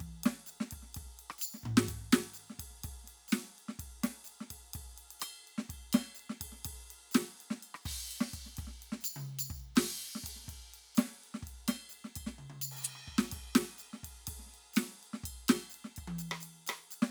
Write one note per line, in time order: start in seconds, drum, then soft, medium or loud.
0.01 kick soft
0.01 ride medium
0.07 kick soft
0.24 snare loud
0.24 ride loud
0.47 ride soft
0.47 percussion medium
0.61 snare medium
0.72 kick soft
0.72 ride medium
0.83 snare soft
0.90 snare soft
0.90 percussion soft
0.95 kick soft
0.95 ride medium
1.03 kick soft
1.03 snare soft
1.20 ride medium
1.31 cross-stick medium
1.39 percussion medium
1.42 percussion loud
1.55 snare soft
1.64 kick soft
1.64 floor tom loud
1.78 snare loud
1.88 kick soft
1.88 ride loud
1.88 percussion soft
1.96 kick soft
2.13 snare loud
2.13 ride loud
2.34 ride soft
2.34 percussion medium
2.50 snare soft
2.60 kick soft
2.60 ride loud
2.71 snare soft
2.84 kick soft
2.84 ride loud
2.92 kick soft
3.05 snare soft
3.05 ride medium
3.29 percussion medium
3.33 snare medium
3.33 ride loud
3.59 ride soft
3.69 snare medium
3.80 kick soft
3.80 ride medium
3.88 kick soft
4.04 snare medium
4.04 ride loud
4.25 ride medium
4.25 percussion medium
4.41 snare soft
4.51 kick soft
4.51 ride medium
4.74 kick soft
4.74 ride loud
4.82 kick soft
4.94 kick soft
4.99 ride medium
5.11 ride medium
5.21 cross-stick medium
5.21 ride bell loud
5.21 percussion medium
5.48 ride soft
5.59 snare medium
5.70 kick soft
5.70 ride medium
5.94 snare loud
5.94 ride bell loud
6.15 percussion medium
6.20 ride soft
6.30 snare medium
6.41 kick soft
6.41 ride loud
6.53 snare soft
6.58 snare soft
6.61 snare soft
6.64 kick soft
6.64 snare soft
6.64 ride loud
6.74 kick soft
6.91 ride medium
7.12 snare loud
7.12 ride loud
7.12 percussion medium
7.41 ride medium
7.51 snare medium
7.63 ride bell medium
7.75 cross-stick medium
7.83 kick medium
7.83 percussion soft
7.83 crash loud
7.92 kick soft
7.99 kick soft
8.12 ride bell medium
8.21 snare medium
8.34 kick soft
8.34 ride bell medium
8.47 snare soft
8.58 kick medium
8.58 ride medium
8.65 kick soft
8.65 snare soft
8.83 ride medium
8.93 snare medium
9.02 percussion soft
9.05 percussion loud
9.17 mid tom medium
9.40 percussion loud
9.51 kick soft
9.58 kick soft
9.61 kick soft
9.73 kick soft
9.73 crash loud
9.78 snare loud
9.97 percussion soft
10.16 snare medium
10.23 kick soft
10.23 percussion soft
10.27 ride loud
10.37 snare soft
10.41 snare soft
10.44 snare soft
10.47 kick soft
10.47 snare soft
10.47 ride medium
10.54 kick soft
10.57 kick soft
10.75 ride medium
10.96 snare loud
10.96 ride loud
10.96 percussion medium
11.08 snare soft
11.24 ride soft
11.35 snare medium
11.43 kick soft
11.43 percussion soft
11.48 kick soft
11.48 ride medium
11.69 snare medium
11.69 ride bell loud
11.90 ride medium
11.90 percussion medium
12.05 snare soft
12.16 kick soft
12.16 ride bell medium
12.25 kick soft
12.25 snare medium
12.39 kick soft
12.39 mid tom medium
12.50 mid tom medium
12.62 percussion loud
12.72 ride medium
12.78 percussion medium
12.83 percussion medium
12.83 floor tom loud
12.96 cross-stick soft
13.08 kick soft
13.19 snare loud
13.32 kick soft
13.32 ride loud
13.39 kick soft
13.56 snare loud
13.56 ride loud
13.79 ride soft
13.79 percussion medium
13.94 snare soft
14.04 kick soft
14.04 ride medium
14.28 kick soft
14.28 ride loud
14.40 snare soft
14.44 snare soft
14.47 snare soft
14.55 ride soft
14.74 snare loud
14.74 ride loud
14.74 percussion medium
15.04 ride soft
15.14 snare medium
15.24 kick soft
15.24 ride bell medium
15.24 percussion soft
15.31 kick soft
15.49 snare loud
15.49 ride bell loud
15.71 percussion medium
15.75 ride medium
15.85 snare soft
15.97 kick soft
15.97 ride bell medium
16.08 high tom loud
16.19 ride medium
16.19 percussion medium
16.32 high tom loud
16.41 ride medium
16.41 percussion medium
16.67 high tom loud
16.67 ride loud
16.67 percussion medium
16.91 ride medium
16.91 percussion medium
17.03 snare loud